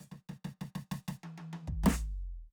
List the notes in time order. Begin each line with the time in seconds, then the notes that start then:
0.01 snare, hi-hat pedal
0.12 snare
0.29 snare
0.45 snare
0.62 snare
0.76 snare
0.92 snare
1.09 snare
1.24 closed hi-hat, high tom
1.38 closed hi-hat, high tom
1.54 high tom
1.68 kick
1.84 snare, floor tom